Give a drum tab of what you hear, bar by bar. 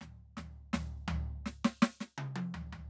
Hi-hat    |-------------g--|
Snare     |g-o-o---oooo----|
High tom  |-------------o--|
Mid tom   |------------o---|
Floor tom |g-o-o-o-------oo|